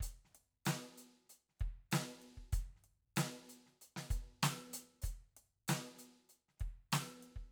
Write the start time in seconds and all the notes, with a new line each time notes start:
0.01 closed hi-hat, kick
0.06 snare
0.25 snare
0.32 snare, closed hi-hat
0.66 closed hi-hat, snare
0.98 closed hi-hat
1.26 closed hi-hat, snare
1.50 snare
1.53 snare
1.57 snare, closed hi-hat
1.61 kick
1.92 closed hi-hat, snare
2.07 snare
2.22 closed hi-hat
2.38 kick
2.53 closed hi-hat, kick
2.77 snare
2.85 closed hi-hat
3.17 closed hi-hat, snare
3.50 closed hi-hat
3.67 snare
3.82 closed hi-hat
3.97 snare
4.11 closed hi-hat, kick
4.43 closed hi-hat, snare
4.74 open hi-hat
5.02 closed hi-hat, kick, hi-hat pedal
5.37 closed hi-hat
5.69 closed hi-hat, snare
5.96 closed hi-hat, snare
6.30 closed hi-hat
6.49 snare
6.58 kick, snare, closed hi-hat
6.93 closed hi-hat, snare
7.23 closed hi-hat
7.36 kick